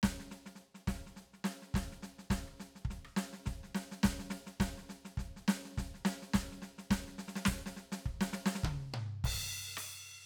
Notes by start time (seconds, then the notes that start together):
0.03 kick, snare
0.19 snare
0.31 snare
0.46 snare
0.55 snare
0.74 snare
0.87 kick, snare
1.06 snare
1.16 snare
1.33 snare
1.44 snare
1.62 snare
1.74 kick, snare
1.92 snare
2.03 snare
2.18 snare
2.30 kick, snare
2.48 cross-stick
2.60 snare
2.75 snare
2.85 kick
2.90 snare
3.05 cross-stick
3.16 snare
3.33 snare
3.46 kick, snare
3.63 snare
3.75 snare
3.91 snare
4.03 kick, snare
4.19 snare
4.30 snare
4.46 snare
4.60 kick, snare
4.77 snare
4.89 snare
5.05 snare
5.17 kick, snare
5.36 snare
5.48 snare
5.65 snare
5.77 kick, snare
5.94 snare
6.05 snare
6.22 snare
6.34 kick, snare
6.52 snare
6.78 snare
6.90 kick, snare
7.07 snare
7.18 snare
7.28 snare
7.35 snare
7.45 kick, snare
7.66 snare
7.76 snare
7.92 snare
8.05 kick, cross-stick
8.21 snare
8.33 snare
8.46 snare
8.55 snare
8.63 kick, high tom
8.94 mid tom
9.24 kick, crash
9.54 open hi-hat
9.77 open hi-hat, cross-stick
10.05 open hi-hat